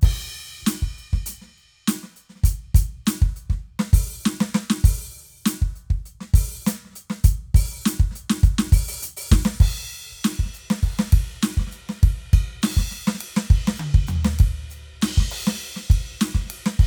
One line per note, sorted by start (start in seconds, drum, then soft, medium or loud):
0.01 kick soft
0.01 hi-hat pedal medium
0.04 kick loud
0.04 crash loud
0.63 kick soft
0.68 closed hi-hat loud
0.68 snare loud
0.83 kick medium
0.99 closed hi-hat soft
1.14 kick medium
1.14 snare soft
1.27 closed hi-hat loud
1.27 snare soft
1.42 snare soft
1.48 snare soft
1.58 closed hi-hat soft
1.89 closed hi-hat loud
1.89 snare loud
2.04 snare soft
2.13 snare soft
2.17 closed hi-hat soft
2.30 snare soft
2.37 snare soft
2.42 closed hi-hat loud
2.42 kick loud
2.42 snare soft
2.75 closed hi-hat loud
2.75 kick loud
3.07 closed hi-hat loud
3.07 snare loud
3.07 hi-hat pedal soft
3.23 kick loud
3.28 snare soft
3.37 closed hi-hat soft
3.51 kick medium
3.51 snare soft
3.67 closed hi-hat soft
3.80 snare loud
3.94 open hi-hat loud
3.94 kick loud
4.25 snare loud
4.25 hi-hat pedal medium
4.42 snare loud
4.55 snare loud
4.71 snare loud
4.85 open hi-hat loud
4.85 kick loud
5.35 kick soft
5.46 closed hi-hat loud
5.46 snare loud
5.46 hi-hat pedal soft
5.63 kick medium
5.76 closed hi-hat soft
5.91 kick medium
5.91 crash soft
5.91 ride soft
6.07 closed hi-hat soft
6.22 snare medium
6.35 open hi-hat loud
6.35 kick loud
6.67 closed hi-hat loud
6.67 snare loud
6.67 hi-hat pedal medium
6.86 snare soft
6.92 snare soft
6.94 closed hi-hat medium
6.94 snare soft
7.11 snare medium
7.25 open hi-hat loud
7.25 kick loud
7.55 open hi-hat loud
7.55 kick loud
7.85 closed hi-hat loud
7.85 snare loud
7.85 hi-hat pedal medium
8.01 kick loud
8.12 snare soft
8.16 closed hi-hat medium
8.31 snare loud
8.44 open hi-hat medium
8.44 kick loud
8.59 snare loud
8.73 open hi-hat loud
8.73 kick loud
8.89 open hi-hat loud
9.03 closed hi-hat loud
9.03 hi-hat pedal medium
9.18 open hi-hat loud
9.33 kick loud
9.33 snare loud
9.46 snare loud
9.61 kick loud
9.61 crash loud
10.13 kick soft
10.25 snare loud
10.25 hi-hat pedal medium
10.25 ride loud
10.40 kick medium
10.46 snare soft
10.55 hi-hat pedal medium
10.55 ride bell soft
10.71 snare loud
10.84 kick medium
10.84 crash medium
11.00 snare loud
11.13 kick loud
11.13 ride loud
11.43 snare loud
11.43 hi-hat pedal medium
11.43 ride loud
11.58 kick medium
11.58 snare medium
11.68 snare soft
11.72 snare soft
11.72 hi-hat pedal medium
11.72 ride medium
11.90 snare medium
12.02 kick loud
12.02 hi-hat pedal soft
12.02 ride medium
12.34 kick loud
12.34 hi-hat pedal soft
12.34 ride bell loud
12.63 snare loud
12.63 hi-hat pedal medium
12.63 crash loud
12.78 kick loud
12.78 snare medium
12.92 snare soft
12.92 hi-hat pedal medium
12.92 ride medium
13.08 snare loud
13.15 snare soft
13.19 hi-hat pedal medium
13.19 ride loud
13.38 snare loud
13.51 kick loud
13.51 ride medium
13.68 snare loud
13.77 hi-hat pedal medium
13.77 mid tom loud
13.95 kick loud
14.08 floor tom loud
14.08 hi-hat pedal medium
14.26 snare loud
14.40 kick loud
14.40 ride loud
14.71 hi-hat pedal medium
14.71 ride medium
14.92 kick soft
15.00 kick soft
15.00 snare loud
15.00 hi-hat pedal medium
15.00 ride loud
15.18 kick loud
15.18 snare medium
15.32 hi-hat pedal medium
15.32 crash loud
15.48 snare loud
15.63 ride medium
15.77 snare medium
15.91 kick loud
15.91 hi-hat pedal soft
15.91 ride bell loud
16.21 snare loud
16.21 hi-hat pedal medium
16.21 ride bell loud
16.36 kick medium
16.36 snare medium
16.41 snare soft
16.47 snare soft
16.51 ride loud
16.67 snare loud
16.77 kick loud
16.77 hi-hat pedal soft
16.77 ride loud